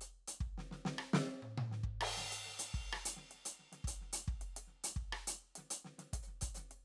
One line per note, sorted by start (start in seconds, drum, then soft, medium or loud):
0.01 closed hi-hat medium
0.28 closed hi-hat loud
0.41 kick soft
0.58 snare soft
0.71 snare soft
0.85 snare medium
0.98 cross-stick medium
1.14 snare medium
1.27 snare soft
1.42 closed hi-hat soft
1.42 high tom medium
1.58 high tom medium
1.72 snare soft
1.84 kick soft
2.01 cross-stick medium
2.01 crash loud
2.17 snare soft
2.20 snare soft
2.32 closed hi-hat medium
2.47 snare soft
2.59 closed hi-hat loud
2.74 kick soft
2.93 cross-stick medium
2.96 cross-stick soft
3.05 closed hi-hat loud
3.17 snare soft
3.31 snare soft
3.31 closed hi-hat soft
3.45 closed hi-hat loud
3.59 snare soft
3.72 snare soft
3.72 closed hi-hat soft
3.84 closed hi-hat medium
3.84 kick soft
4.01 snare soft
4.13 closed hi-hat loud
4.28 kick soft
4.41 closed hi-hat soft
4.57 closed hi-hat medium
4.67 snare soft
4.84 closed hi-hat loud
4.96 kick soft
5.13 cross-stick medium
5.27 closed hi-hat loud
5.56 snare soft
5.56 closed hi-hat medium
5.71 closed hi-hat loud
5.85 snare soft
5.99 snare soft
5.99 closed hi-hat soft
6.13 kick soft
6.13 open hi-hat medium
6.23 hi-hat pedal soft
6.27 snare soft
6.41 open hi-hat medium
6.41 kick soft
6.55 snare soft
6.55 hi-hat pedal medium
6.71 closed hi-hat soft